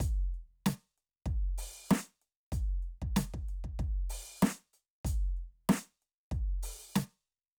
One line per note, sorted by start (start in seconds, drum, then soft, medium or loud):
0.01 closed hi-hat loud
0.01 kick medium
0.35 closed hi-hat soft
0.67 closed hi-hat medium
0.67 snare loud
0.99 closed hi-hat soft
1.27 kick medium
1.27 closed hi-hat soft
1.59 open hi-hat loud
1.90 snare loud
1.90 closed hi-hat soft
1.90 hi-hat pedal medium
2.23 closed hi-hat soft
2.53 closed hi-hat medium
2.53 kick medium
2.83 closed hi-hat soft
3.03 kick medium
3.17 closed hi-hat loud
3.17 snare loud
3.35 kick medium
3.49 closed hi-hat soft
3.65 kick soft
3.80 kick medium
3.80 closed hi-hat soft
4.11 open hi-hat loud
4.43 closed hi-hat medium
4.43 snare loud
4.43 hi-hat pedal medium
4.74 closed hi-hat soft
5.06 closed hi-hat loud
5.06 kick medium
5.38 closed hi-hat soft
5.70 closed hi-hat medium
5.70 snare loud
6.03 closed hi-hat soft
6.32 closed hi-hat soft
6.32 kick medium
6.64 open hi-hat loud
6.96 closed hi-hat medium
6.96 snare loud
6.96 hi-hat pedal medium